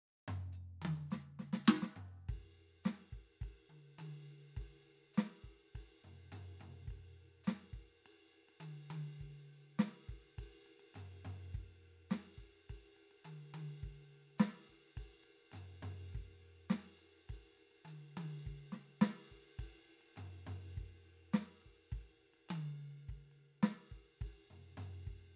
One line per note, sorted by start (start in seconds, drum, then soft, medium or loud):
0.28 floor tom medium
0.53 hi-hat pedal soft
0.82 high tom medium
0.85 high tom loud
1.11 snare medium
1.11 hi-hat pedal soft
1.40 snare soft
1.53 snare medium
1.65 snare loud
1.65 hi-hat pedal medium
1.83 snare medium
1.96 floor tom soft
2.29 kick soft
2.29 ride medium
2.84 snare medium
2.84 hi-hat pedal medium
2.84 ride soft
3.13 kick soft
3.42 kick soft
3.42 ride soft
3.70 high tom soft
3.98 hi-hat pedal medium
3.98 high tom medium
3.98 ride medium
4.57 kick soft
4.57 ride medium
5.14 snare medium
5.14 hi-hat pedal medium
5.19 ride medium
5.44 kick soft
5.75 kick soft
5.75 ride medium
6.05 floor tom soft
6.32 floor tom soft
6.32 hi-hat pedal medium
6.32 ride medium
6.60 floor tom soft
6.60 ride soft
6.88 kick soft
6.88 ride soft
7.44 snare medium
7.44 hi-hat pedal medium
7.44 ride medium
7.73 kick soft
7.73 ride soft
8.06 ride medium
8.34 ride soft
8.49 ride soft
8.61 hi-hat pedal medium
8.61 high tom medium
8.61 ride medium
8.91 high tom medium
8.91 ride medium
9.21 kick soft
9.21 ride soft
9.79 snare medium
9.79 hi-hat pedal medium
9.79 ride medium
10.08 kick soft
10.08 ride soft
10.39 kick soft
10.39 ride medium
10.67 ride soft
10.80 ride soft
10.95 floor tom soft
10.95 hi-hat pedal medium
10.95 ride soft
11.25 floor tom medium
11.25 ride soft
11.53 kick soft
11.53 ride soft
12.10 snare medium
12.10 hi-hat pedal medium
12.10 ride medium
12.38 kick soft
12.38 ride soft
12.70 kick soft
12.70 ride medium
12.97 ride soft
13.12 ride soft
13.25 hi-hat pedal medium
13.25 high tom soft
13.25 ride soft
13.54 high tom medium
13.54 ride medium
13.83 kick soft
13.83 ride soft
14.12 ride soft
14.39 snare medium
14.39 hi-hat pedal medium
14.39 ride medium
14.68 kick soft
14.68 ride soft
14.97 kick soft
14.97 ride medium
15.24 ride soft
15.39 ride soft
15.52 floor tom soft
15.52 hi-hat pedal medium
15.52 ride medium
15.83 floor tom medium
15.83 ride medium
16.13 kick soft
16.13 ride soft
16.41 ride soft
16.70 snare medium
16.70 hi-hat pedal medium
16.70 ride medium
17.00 ride soft
17.30 kick soft
17.30 ride medium
17.58 ride soft
17.72 ride soft
17.85 hi-hat pedal medium
17.85 high tom soft
17.85 ride soft
18.17 high tom medium
18.17 ride medium
18.45 kick soft
18.45 ride soft
18.73 snare soft
18.73 ride soft
19.02 snare medium
19.02 hi-hat pedal medium
19.02 ride medium
19.30 kick soft
19.30 ride soft
19.59 kick soft
19.59 ride medium
19.88 ride soft
20.01 ride soft
20.17 floor tom soft
20.17 hi-hat pedal medium
20.17 ride soft
20.47 floor tom medium
20.47 ride medium
20.76 kick soft
20.76 ride soft
21.33 snare medium
21.33 hi-hat pedal medium
21.33 ride medium
21.62 kick soft
21.62 ride soft
21.92 kick soft
21.92 ride soft
22.19 ride soft
22.34 ride soft
22.49 hi-hat pedal medium
22.49 high tom medium
22.49 ride bell medium
23.09 kick soft
23.09 ride soft
23.32 ride soft
23.63 snare medium
23.63 hi-hat pedal medium
23.63 ride medium
23.92 kick soft
23.92 ride soft
24.22 kick soft
24.22 ride medium
24.51 floor tom soft
24.78 floor tom medium
24.78 hi-hat pedal medium
24.78 ride medium
25.07 kick soft